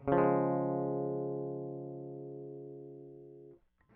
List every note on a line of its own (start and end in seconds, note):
0.08 3.58 C#3
0.12 3.58 F3
0.18 3.55 G#3